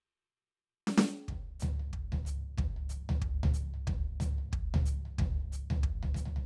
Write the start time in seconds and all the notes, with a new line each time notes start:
0.87 snare
0.98 snare
1.28 kick, floor tom
1.60 floor tom, hi-hat pedal
1.79 floor tom
1.93 kick, floor tom
2.12 floor tom
2.25 floor tom, hi-hat pedal
2.58 kick, floor tom
2.76 floor tom
2.89 floor tom, hi-hat pedal
3.09 floor tom
3.21 kick
3.43 floor tom
3.54 hi-hat pedal
3.74 floor tom
3.87 kick, floor tom
4.20 floor tom, hi-hat pedal
4.38 floor tom
4.52 kick, floor tom
4.74 floor tom
4.86 floor tom, hi-hat pedal
5.05 floor tom
5.18 kick, floor tom
5.40 floor tom
5.52 floor tom, hi-hat pedal
5.70 floor tom
5.83 kick, floor tom
6.03 floor tom
6.14 floor tom, hi-hat pedal
6.25 floor tom
6.36 floor tom